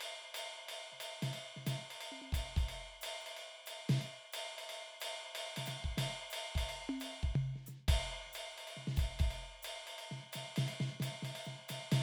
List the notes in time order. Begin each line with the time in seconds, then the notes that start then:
0.01 ride
0.35 hi-hat pedal, ride
0.69 ride
0.92 snare
1.00 hi-hat pedal, ride
1.23 snare, ride
1.33 ride
1.57 snare
1.67 snare, hi-hat pedal, ride
1.91 ride
2.01 ride
2.12 high tom
2.22 high tom
2.33 kick, hi-hat pedal, ride
2.57 kick, ride
2.69 ride
3.02 hi-hat pedal, ride
3.20 hi-hat pedal
3.26 ride
3.37 ride
3.66 hi-hat pedal, ride
3.89 snare, ride
4.01 ride
4.33 hi-hat pedal, ride
4.58 ride
4.69 ride
5.01 hi-hat pedal, ride
5.35 ride
5.57 snare, ride
5.66 snare, hi-hat pedal, ride
5.84 kick
5.98 snare, ride
6.30 hi-hat pedal, ride
6.55 kick, ride
6.69 ride
6.90 high tom
7.00 hi-hat pedal, ride
7.23 kick
7.36 floor tom
7.56 snare
7.67 snare, hi-hat pedal
7.88 kick, ride
8.27 snare
8.33 hi-hat pedal, ride
8.52 hi-hat pedal
8.58 ride
8.68 ride
8.77 snare
8.88 snare
8.97 kick, hi-hat pedal, ride
9.19 kick, ride
9.31 ride
9.63 hi-hat pedal, ride
9.87 ride
9.98 ride
10.12 snare
10.33 snare, hi-hat pedal, ride
10.56 snare, ride
10.68 ride
10.81 snare
11.00 snare, hi-hat pedal, ride
11.23 snare, hi-hat pedal, ride
11.35 ride
11.44 snare, hi-hat pedal
11.69 snare, hi-hat pedal, ride
11.92 snare, ride